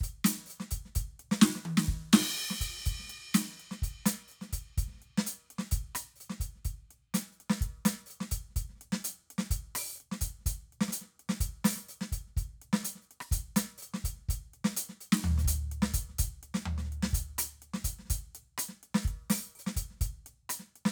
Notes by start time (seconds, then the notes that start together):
0.01 closed hi-hat, kick
0.25 closed hi-hat, snare
0.46 closed hi-hat, hi-hat pedal
0.60 snare
0.71 closed hi-hat, kick
0.86 snare
0.96 closed hi-hat, kick
1.02 kick
1.20 closed hi-hat
1.32 snare
1.42 snare
1.56 snare
1.66 high tom
1.78 snare
1.85 kick, hi-hat pedal
1.97 kick
2.13 snare, crash
2.38 closed hi-hat
2.51 snare
2.61 closed hi-hat, kick
2.80 snare
2.86 closed hi-hat, kick
3.00 snare
3.04 snare
3.09 snare, closed hi-hat
3.35 closed hi-hat, snare
3.60 closed hi-hat
3.71 snare
3.82 closed hi-hat, kick
3.90 kick
4.06 open hi-hat, snare
4.28 closed hi-hat, hi-hat pedal
4.42 snare
4.49 closed hi-hat, kick, snare
4.78 closed hi-hat, kick
4.84 kick, snare
4.92 snare
4.97 snare
5.02 closed hi-hat
5.18 snare
5.27 closed hi-hat
5.51 closed hi-hat
5.59 snare
5.72 closed hi-hat, kick
5.79 kick
5.95 closed hi-hat, cross-stick
6.16 hi-hat pedal
6.21 closed hi-hat
6.30 snare
6.40 closed hi-hat, kick
6.55 snare
6.65 closed hi-hat, kick
6.91 closed hi-hat
7.14 closed hi-hat, snare
7.32 hi-hat pedal
7.41 closed hi-hat
7.50 snare
7.61 kick, closed hi-hat
7.86 closed hi-hat, snare
8.06 closed hi-hat, hi-hat pedal
8.21 snare
8.32 closed hi-hat, kick
8.50 snare
8.56 closed hi-hat, kick
8.65 kick
8.70 snare
8.76 snare
8.81 closed hi-hat
8.93 snare
9.05 closed hi-hat
9.31 closed hi-hat
9.38 snare
9.51 closed hi-hat, kick
9.75 open hi-hat, cross-stick
9.95 hi-hat pedal
10.00 closed hi-hat
10.12 snare
10.21 closed hi-hat, kick
10.41 snare
10.46 closed hi-hat, kick
10.52 kick
10.73 closed hi-hat
10.81 snare
10.88 snare
10.93 closed hi-hat
11.01 snare
11.20 closed hi-hat
11.29 snare
11.41 closed hi-hat, kick
11.49 kick
11.65 open hi-hat, snare
11.76 snare
11.89 closed hi-hat, hi-hat pedal
12.01 snare
12.12 closed hi-hat, kick
12.27 snare
12.37 closed hi-hat, kick
12.62 closed hi-hat
12.73 snare
12.84 closed hi-hat, snare
12.95 snare
13.02 hi-hat pedal
13.11 closed hi-hat
13.21 cross-stick
13.32 closed hi-hat, kick
13.38 kick
13.56 closed hi-hat, snare
13.78 hi-hat pedal
13.82 closed hi-hat
13.94 snare
14.04 closed hi-hat, kick
14.15 snare
14.18 snare
14.29 closed hi-hat, kick
14.35 kick
14.54 closed hi-hat
14.65 snare
14.75 closed hi-hat, snare
14.89 snare
15.01 closed hi-hat
15.13 snare
15.24 floor tom
15.38 snare, hi-hat pedal
15.45 closed hi-hat, kick
15.72 closed hi-hat
15.83 snare
15.94 closed hi-hat, kick
16.01 kick
16.09 snare
16.19 closed hi-hat, kick
16.26 kick
16.43 closed hi-hat
16.55 snare
16.66 floor tom
16.78 snare
16.85 snare
16.93 open hi-hat
17.03 snare
17.09 kick, hi-hat pedal
17.15 closed hi-hat
17.20 kick
17.39 closed hi-hat, cross-stick
17.62 closed hi-hat
17.74 snare
17.85 closed hi-hat, kick
17.99 snare
18.05 snare
18.09 closed hi-hat, kick, snare
18.16 kick
18.35 closed hi-hat
18.58 closed hi-hat, cross-stick
18.69 snare
18.83 closed hi-hat
18.95 snare
19.02 kick, hi-hat pedal
19.08 kick, closed hi-hat
19.30 open hi-hat, snare
19.56 hi-hat pedal, open hi-hat
19.67 snare
19.77 closed hi-hat, kick
19.91 snare
19.96 snare
19.99 closed hi-hat, kick, snare
20.08 kick
20.26 closed hi-hat
20.50 closed hi-hat, cross-stick
20.60 snare
20.76 closed hi-hat
20.86 snare